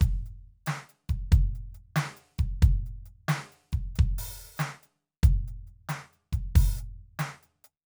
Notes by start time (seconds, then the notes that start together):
0.01 kick, closed hi-hat
0.26 closed hi-hat
0.66 snare, closed hi-hat
0.89 closed hi-hat
1.09 kick, closed hi-hat
1.32 kick, closed hi-hat
1.55 closed hi-hat
1.74 closed hi-hat
1.96 snare, closed hi-hat
2.17 closed hi-hat
2.38 kick, closed hi-hat
2.62 kick, closed hi-hat
2.86 closed hi-hat
3.06 closed hi-hat
3.28 snare, closed hi-hat
3.52 closed hi-hat
3.72 kick, closed hi-hat
3.96 kick, closed hi-hat
4.18 open hi-hat
4.57 snare, closed hi-hat, hi-hat pedal
4.83 closed hi-hat
5.23 closed hi-hat, kick
5.48 closed hi-hat
5.67 closed hi-hat
5.89 snare, closed hi-hat
6.13 closed hi-hat
6.33 kick, closed hi-hat
6.55 kick, open hi-hat
6.78 hi-hat pedal
7.19 closed hi-hat, snare
7.43 closed hi-hat
7.64 closed hi-hat